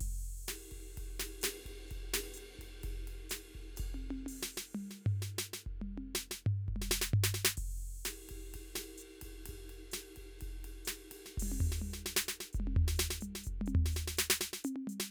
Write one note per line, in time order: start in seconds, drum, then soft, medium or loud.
0.01 kick soft
0.01 crash loud
0.07 kick soft
0.48 snare medium
0.48 hi-hat pedal medium
0.48 ride medium
0.72 kick soft
0.72 ride soft
0.77 kick soft
0.82 snare soft
0.95 kick soft
0.95 hi-hat pedal soft
0.95 ride medium
1.03 kick soft
1.20 snare medium
1.20 ride medium
1.42 snare medium
1.42 hi-hat pedal medium
1.42 ride loud
1.51 snare soft
1.66 kick soft
1.66 ride soft
1.71 kick soft
1.80 snare soft
1.88 kick soft
1.88 hi-hat pedal soft
1.88 ride soft
1.97 kick soft
2.14 snare medium
2.14 ride loud
2.24 snare soft
2.34 hi-hat pedal medium
2.34 ride soft
2.45 snare soft
2.59 kick soft
2.59 ride soft
2.64 kick soft
2.81 kick soft
2.81 hi-hat pedal soft
2.81 ride medium
2.90 kick soft
3.08 ride soft
3.30 snare medium
3.30 hi-hat pedal medium
3.30 ride medium
3.56 kick soft
3.61 kick soft
3.61 snare soft
3.77 kick soft
3.77 hi-hat pedal soft
3.77 ride bell medium
3.86 kick soft
3.95 high tom medium
4.11 high tom medium
4.27 hi-hat pedal medium
4.27 high tom medium
4.43 snare medium
4.58 snare medium
4.75 mid tom medium
4.91 snare soft
5.07 floor tom loud
5.23 snare medium
5.39 snare medium
5.54 snare medium
5.67 kick soft
5.72 kick soft
5.82 mid tom medium
5.98 high tom medium
6.15 snare loud
6.31 snare medium
6.47 floor tom loud
6.69 kick soft
6.75 kick soft
6.75 mid tom medium
6.82 snare medium
6.92 snare loud
7.02 snare medium
7.14 floor tom loud
7.24 snare loud
7.35 snare medium
7.45 snare loud
7.58 kick soft
7.58 crash medium
7.64 kick soft
8.05 snare medium
8.05 hi-hat pedal loud
8.05 ride medium
8.29 kick soft
8.29 ride medium
8.36 kick soft
8.36 snare soft
8.44 snare soft
8.49 snare soft
8.49 hi-hat pedal soft
8.54 kick soft
8.54 ride medium
8.61 kick soft
8.76 snare medium
8.76 ride medium
8.98 hi-hat pedal medium
9.22 kick soft
9.22 ride medium
9.28 kick soft
9.46 kick soft
9.46 snare soft
9.46 hi-hat pedal soft
9.46 ride medium
9.54 kick soft
9.70 ride soft
9.92 snare medium
9.92 hi-hat pedal medium
9.92 ride medium
10.17 kick soft
10.17 ride soft
10.31 snare soft
10.39 kick soft
10.39 hi-hat pedal soft
10.39 ride medium
10.65 ride medium
10.86 snare medium
10.86 hi-hat pedal medium
10.86 ride medium
10.99 snare soft
11.12 ride medium
11.26 snare soft
11.38 kick soft
11.38 hi-hat pedal loud
11.43 kick soft
11.43 mid tom medium
11.52 high tom medium
11.61 floor tom loud
11.72 snare medium
11.82 mid tom medium
11.94 snare medium
11.99 hi-hat pedal soft
12.06 snare medium
12.17 snare loud
12.26 snare medium
12.26 hi-hat pedal soft
12.41 snare medium
12.53 kick medium
12.53 hi-hat pedal medium
12.60 kick soft
12.60 mid tom medium
12.64 kick soft
12.64 high tom medium
12.77 floor tom loud
12.88 snare medium
12.96 snare loud
12.96 hi-hat pedal medium
13.11 snare medium
13.21 hi-hat pedal medium
13.21 mid tom medium
13.36 snare medium
13.44 kick soft
13.44 hi-hat pedal medium
13.62 mid tom loud
13.66 hi-hat pedal medium
13.66 high tom loud
13.75 floor tom loud
13.86 snare medium
13.93 hi-hat pedal medium
13.97 snare medium
14.08 snare medium
14.18 snare loud
14.18 hi-hat pedal medium
14.30 snare loud
14.41 snare loud
14.41 hi-hat pedal medium
14.54 snare medium
14.65 hi-hat pedal loud
14.65 high tom loud
14.76 high tom medium
14.88 hi-hat pedal medium
14.88 mid tom medium
15.00 snare medium